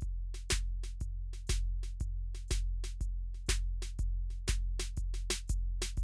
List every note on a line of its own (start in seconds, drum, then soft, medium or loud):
0.01 closed hi-hat soft
0.01 kick soft
0.34 snare soft
0.50 closed hi-hat loud
0.50 kick medium
0.50 snare loud
0.50 hi-hat pedal medium
0.84 snare soft
1.01 closed hi-hat medium
1.01 kick medium
1.34 snare soft
1.47 closed hi-hat loud
1.47 kick medium
1.47 snare medium
1.47 hi-hat pedal soft
1.83 snare soft
2.00 closed hi-hat medium
2.00 kick medium
2.35 snare soft
2.48 closed hi-hat loud
2.48 kick medium
2.48 snare medium
2.48 hi-hat pedal soft
2.84 snare medium
3.01 closed hi-hat medium
3.01 kick soft
3.35 snare soft
3.47 closed hi-hat loud
3.47 kick medium
3.47 snare loud
3.47 hi-hat pedal soft
3.82 snare medium
3.99 closed hi-hat medium
3.99 kick medium
4.31 snare soft
4.48 closed hi-hat loud
4.48 kick medium
4.48 snare medium
4.48 hi-hat pedal soft
4.80 snare medium
4.97 closed hi-hat medium
4.97 kick medium
5.14 snare soft
5.30 snare loud
5.48 closed hi-hat loud
5.48 kick medium
5.48 hi-hat pedal soft
5.82 closed hi-hat medium
5.82 snare medium
5.97 closed hi-hat medium
5.97 kick medium